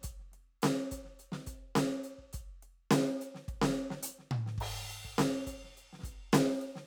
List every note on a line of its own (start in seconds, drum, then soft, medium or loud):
0.01 closed hi-hat medium
0.01 kick soft
0.01 snare soft
0.19 snare soft
0.32 snare soft
0.32 closed hi-hat soft
0.34 snare soft
0.62 closed hi-hat medium
0.62 snare loud
0.75 snare soft
0.91 closed hi-hat medium
0.91 kick soft
1.05 snare soft
1.19 closed hi-hat soft
1.32 snare medium
1.46 closed hi-hat medium
1.46 kick soft
1.75 closed hi-hat medium
1.75 snare loud
1.88 snare soft
2.03 closed hi-hat soft
2.18 kick soft
2.18 snare soft
2.33 closed hi-hat medium
2.33 kick soft
2.63 closed hi-hat soft
2.91 closed hi-hat medium
2.91 snare loud
3.01 snare soft
3.21 open hi-hat medium
3.21 hi-hat pedal medium
3.35 snare soft
3.48 kick soft
3.48 closed hi-hat soft
3.54 kick soft
3.57 kick soft
3.62 snare loud
3.68 snare soft
3.75 closed hi-hat soft
3.90 snare medium
4.03 closed hi-hat loud
4.19 snare soft
4.31 high tom loud
4.46 snare soft
4.58 kick soft
4.58 crash loud
4.63 kick soft
4.66 kick soft
4.82 snare soft
4.89 closed hi-hat soft
5.05 kick soft
5.18 open hi-hat medium
5.18 snare loud
5.31 snare soft
5.47 closed hi-hat medium
5.47 kick soft
5.64 snare soft
5.77 closed hi-hat soft
5.93 snare soft
5.99 snare soft
6.03 closed hi-hat soft
6.03 kick soft
6.33 open hi-hat medium
6.33 snare loud
6.61 closed hi-hat soft
6.75 snare soft